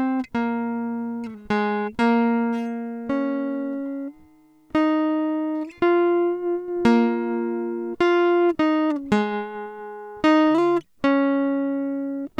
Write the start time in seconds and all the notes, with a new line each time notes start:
0.00 C4
0.36 A#3
1.52 G#3
2.00 A#3
3.11 C#4
4.76 D#4
5.84 F4
6.87 A#3
8.02 F4
8.61 D#4
9.13 G#3
10.26 D#4
10.57 F4
11.05 C#4